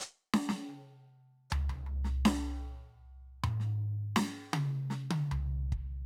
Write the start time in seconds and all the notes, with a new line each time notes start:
0.00 hi-hat pedal
0.33 snare
0.49 snare
0.69 high tom
1.50 floor tom, hi-hat pedal
1.69 floor tom
1.86 floor tom
2.04 snare
2.25 snare
3.43 mid tom
3.60 snare
4.16 snare
4.50 hi-hat pedal, high tom
4.90 snare
5.10 high tom
5.31 floor tom
5.72 kick